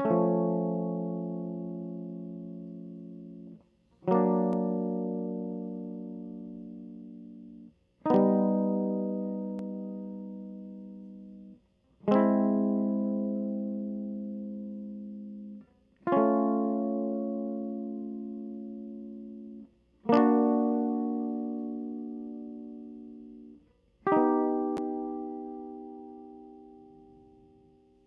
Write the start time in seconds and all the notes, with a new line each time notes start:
0.00 C#4
0.06 A3
0.11 F3
4.09 F#3 A#3
4.15 D4
8.06 D#4
8.11 G3 B3
12.09 G#3 C4
12.16 E4
16.07 F4
16.13 C#4
16.17 A3
20.10 A#3 D4
20.17 F#4
24.07 G4
24.12 D#4
24.17 B3